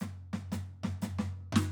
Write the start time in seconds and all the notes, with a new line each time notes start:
0.01 snare, floor tom, hi-hat pedal
0.34 snare, floor tom
0.52 snare, floor tom, hi-hat pedal
0.84 snare, floor tom
1.02 snare, floor tom, hi-hat pedal
1.19 snare, floor tom
1.53 snare, floor tom